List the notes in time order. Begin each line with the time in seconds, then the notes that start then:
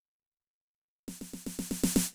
1.08 snare
1.21 snare
1.33 snare
1.46 snare
1.59 snare
1.71 snare
1.83 snare
1.96 snare